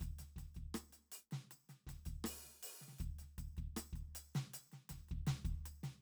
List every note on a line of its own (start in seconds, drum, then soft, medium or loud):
0.01 kick soft
0.01 percussion soft
0.03 percussion soft
0.19 snare soft
0.19 percussion soft
0.36 kick soft
0.36 snare soft
0.36 percussion soft
0.55 kick soft
0.55 percussion soft
0.75 cross-stick medium
0.75 percussion medium
0.93 percussion soft
1.12 percussion medium
1.31 snare soft
1.31 percussion soft
1.51 percussion soft
1.69 snare soft
1.69 percussion soft
1.87 kick soft
1.87 snare soft
1.87 percussion soft
2.06 kick soft
2.06 percussion soft
2.24 cross-stick medium
2.24 percussion medium
2.45 snare soft
2.63 percussion medium
2.82 snare soft
2.88 snare soft
2.93 snare soft
2.99 kick soft
2.99 percussion soft
3.01 percussion soft
3.19 snare soft
3.19 percussion soft
3.38 kick soft
3.38 percussion soft
3.57 kick soft
3.57 percussion soft
3.77 cross-stick medium
3.77 percussion medium
3.93 kick soft
3.93 percussion soft
4.15 percussion medium
4.35 snare medium
4.35 percussion soft
4.54 percussion medium
4.72 snare soft
4.72 percussion soft
4.90 kick soft
4.90 snare soft
4.90 percussion medium
5.09 kick soft
5.09 percussion soft
5.27 snare medium
5.27 percussion soft
5.45 kick soft
5.45 percussion soft
5.66 percussion medium
5.84 snare soft
5.84 percussion soft